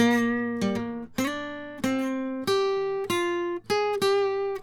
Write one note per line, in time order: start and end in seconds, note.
0.00 0.77 A#3
0.63 0.81 G3
0.77 1.10 A#3
1.19 1.83 D4
1.85 2.48 C4
2.49 3.08 G4
3.11 3.63 F4
3.71 4.00 G#4
4.03 4.62 G4